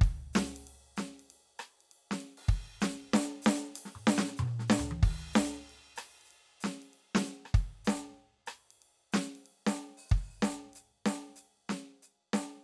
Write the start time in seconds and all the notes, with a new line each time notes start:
0.01 kick, ride
0.33 snare, hi-hat pedal, ride
0.56 ride
0.67 ride
0.96 snare, hi-hat pedal, ride
1.19 ride
1.30 ride
1.59 cross-stick, hi-hat pedal, ride
1.81 ride
1.91 ride
2.11 snare, hi-hat pedal
2.20 ride
2.37 crash
2.48 kick, ride
2.81 snare, hi-hat pedal, ride
3.13 snare, ride
3.42 hi-hat pedal, ride
3.46 snare
3.75 hi-hat pedal, ride
3.85 snare
3.95 mid tom
4.07 snare, hi-hat pedal
4.18 snare
4.29 cross-stick
4.37 hi-hat pedal, mid tom
4.47 cross-stick
4.59 snare
4.68 snare, hi-hat pedal
4.79 floor tom
4.91 high tom
5.03 kick, crash
5.33 snare, hi-hat pedal, ride
5.69 ride
5.96 cross-stick, hi-hat pedal, ride
6.21 hi-hat pedal, ride
6.31 ride
6.60 snare, hi-hat pedal, ride
6.82 ride
6.93 ride
7.15 snare, hi-hat pedal
7.45 cross-stick
7.54 kick, hi-hat pedal, ride
7.85 snare, hi-hat pedal
8.46 cross-stick, hi-hat pedal, ride
8.71 ride
8.82 ride
9.12 snare, hi-hat pedal, ride
9.35 ride
9.46 ride
9.67 snare, hi-hat pedal
9.78 ride
9.97 open hi-hat
10.10 kick, ride
10.41 snare, hi-hat pedal
10.73 hi-hat pedal, ride
11.06 snare, ride
11.36 hi-hat pedal, ride
11.69 snare, ride
12.02 hi-hat pedal
12.33 snare, ride